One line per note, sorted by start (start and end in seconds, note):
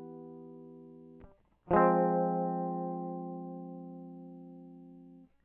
1.72 5.29 F3
1.72 5.29 G#3
1.77 5.28 C4